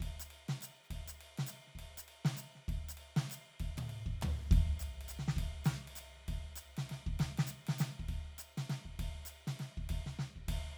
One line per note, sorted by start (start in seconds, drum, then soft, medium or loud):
0.01 kick soft
0.01 ride medium
0.21 percussion medium
0.31 ride soft
0.49 snare medium
0.49 ride soft
0.62 ride soft
0.62 percussion medium
0.85 percussion soft
0.91 kick soft
0.91 ride medium
1.09 percussion medium
1.22 ride soft
1.38 snare medium
1.38 ride soft
1.47 ride soft
1.47 percussion medium
1.68 snare soft
1.76 kick soft
1.76 ride medium
1.98 percussion medium
2.09 ride soft
2.26 snare medium
2.26 ride soft
2.38 ride soft
2.38 percussion medium
2.56 snare soft
2.69 kick medium
2.69 ride soft
2.90 percussion medium
2.98 ride soft
3.17 snare medium
3.17 ride soft
3.31 ride soft
3.31 percussion medium
3.60 kick soft
3.60 ride soft
3.78 high tom medium
3.78 ride soft
3.90 ride soft
4.07 kick soft
4.22 floor tom loud
4.22 ride medium
4.52 kick medium
4.52 ride medium
4.80 ride soft
4.80 percussion medium
5.02 ride soft
5.09 ride soft
5.09 percussion medium
5.20 snare soft
5.29 snare medium
5.37 kick medium
5.37 ride medium
5.65 snare medium
5.65 ride medium
5.65 percussion medium
5.88 ride soft
5.96 ride soft
5.96 percussion medium
6.21 snare soft
6.29 kick soft
6.29 ride medium
6.57 ride soft
6.57 percussion medium
6.78 snare medium
6.78 ride soft
6.90 snare soft
6.90 ride soft
7.07 kick medium
7.20 snare medium
7.20 ride medium
7.38 snare medium
7.38 ride medium
7.48 percussion medium
7.68 snare medium
7.68 ride medium
7.79 snare medium
7.79 ride medium
7.79 percussion medium
8.00 kick soft
8.09 kick soft
8.09 ride soft
8.39 ride soft
8.39 percussion medium
8.58 snare medium
8.58 ride soft
8.70 snare medium
8.70 ride soft
8.86 kick soft
9.00 kick soft
9.00 ride medium
9.17 snare soft
9.26 percussion medium
9.30 ride soft
9.48 snare medium
9.48 ride soft
9.60 snare soft
9.60 ride soft
9.78 kick soft
9.90 kick soft
9.90 ride medium
10.07 snare soft
10.20 snare medium
10.37 kick soft
10.49 kick medium
10.49 ride medium
10.68 snare soft